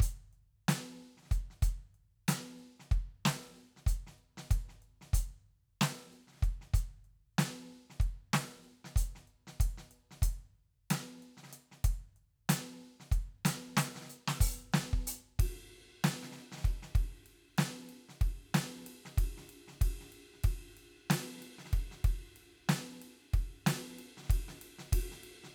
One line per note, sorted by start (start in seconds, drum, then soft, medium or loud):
0.01 closed hi-hat medium
0.01 kick medium
0.33 closed hi-hat soft
0.69 closed hi-hat medium
0.69 snare loud
1.01 closed hi-hat soft
1.18 snare soft
1.22 snare soft
1.25 snare soft
1.30 closed hi-hat medium
1.30 kick medium
1.30 snare soft
1.51 snare soft
1.63 closed hi-hat medium
1.63 kick medium
1.95 closed hi-hat soft
2.29 closed hi-hat loud
2.29 snare loud
2.60 closed hi-hat soft
2.80 snare soft
2.92 kick medium
2.92 closed hi-hat soft
3.26 closed hi-hat medium
3.26 snare loud
3.54 snare soft
3.77 snare soft
3.87 closed hi-hat medium
3.87 kick medium
4.07 snare soft
4.19 closed hi-hat soft
4.38 snare medium
4.51 kick medium
4.51 closed hi-hat medium
4.69 snare soft
4.83 closed hi-hat soft
5.02 snare soft
5.14 closed hi-hat loud
5.14 kick medium
5.82 closed hi-hat medium
5.82 snare loud
6.11 snare soft
6.11 closed hi-hat soft
6.28 snare soft
6.32 snare soft
6.35 snare soft
6.43 kick medium
6.43 closed hi-hat soft
6.62 snare soft
6.74 closed hi-hat medium
6.74 kick medium
7.05 closed hi-hat soft
7.39 closed hi-hat medium
7.39 snare loud
7.71 closed hi-hat soft
7.90 snare soft
8.01 kick medium
8.01 closed hi-hat soft
8.34 snare loud
8.34 closed hi-hat medium
8.64 snare soft
8.64 closed hi-hat soft
8.85 snare soft
8.97 closed hi-hat medium
8.97 kick medium
9.16 snare soft
9.28 closed hi-hat soft
9.48 snare soft
9.61 kick medium
9.61 closed hi-hat medium
9.78 snare soft
9.92 closed hi-hat soft
10.11 snare soft
10.23 kick medium
10.23 closed hi-hat medium
10.91 snare loud
10.91 closed hi-hat loud
11.21 snare soft
11.21 closed hi-hat soft
11.38 snare soft
11.44 snare soft
11.51 snare soft
11.51 closed hi-hat medium
11.72 snare soft
11.85 kick medium
11.85 closed hi-hat medium
12.17 closed hi-hat soft
12.50 closed hi-hat loud
12.50 snare loud
12.82 closed hi-hat soft
13.01 snare soft
13.12 kick medium
13.12 closed hi-hat medium
13.46 closed hi-hat loud
13.46 snare loud
13.77 closed hi-hat loud
13.77 snare loud
13.96 snare soft
14.01 snare soft
14.05 snare soft
14.10 closed hi-hat medium
14.10 snare soft
14.28 snare loud
14.41 open hi-hat loud
14.41 kick medium
14.73 snare loud
14.73 hi-hat pedal soft
14.94 kick medium
15.08 closed hi-hat loud
15.40 kick medium
15.40 ride loud
16.05 snare loud
16.05 ride medium
16.23 snare soft
16.33 snare soft
16.33 ride soft
16.36 snare soft
16.39 snare soft
16.52 snare medium
16.57 snare soft
16.61 snare soft
16.64 kick medium
16.64 snare soft
16.64 ride soft
16.83 snare soft
16.96 kick medium
16.96 ride medium
17.27 ride soft
17.59 snare loud
17.59 ride medium
17.90 ride soft
18.09 snare soft
18.22 kick medium
18.22 ride medium
18.55 snare loud
18.55 ride medium
18.77 snare soft
18.83 snare soft
18.87 ride medium
19.06 snare soft
19.18 kick medium
19.18 ride medium
19.38 snare soft
19.41 snare soft
19.50 ride soft
19.68 snare soft
19.71 snare soft
19.82 kick medium
19.82 ride medium
20.01 snare soft
20.13 ride soft
20.34 snare soft
20.44 kick medium
20.44 ride medium
20.78 ride soft
20.93 ride soft
21.11 snare loud
21.11 ride loud
21.39 snare soft
21.43 ride soft
21.54 ride soft
21.59 snare soft
21.66 snare soft
21.69 snare soft
21.74 kick medium
21.74 ride medium
21.92 snare soft
22.05 kick medium
22.05 ride medium
22.37 ride soft
22.70 snare loud
22.70 ride medium
23.00 snare soft
23.00 ride soft
23.34 kick medium
23.34 ride medium
23.67 snare loud
23.67 ride loud
23.99 ride soft
24.18 snare soft
24.23 snare soft
24.27 snare soft
24.30 kick medium
24.30 snare soft
24.30 ride medium
24.49 snare soft
24.62 ride medium
24.79 snare soft
24.93 kick medium
24.93 ride loud
25.12 snare soft
25.24 ride soft
25.44 snare soft